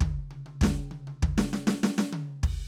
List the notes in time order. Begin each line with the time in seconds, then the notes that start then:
0.01 kick, high tom
0.31 high tom
0.46 high tom
0.61 kick, snare, high tom
0.92 high tom
1.08 high tom
1.23 kick, high tom
1.38 snare
1.53 snare
1.68 snare
1.84 snare
1.98 snare
2.13 high tom
2.44 kick, crash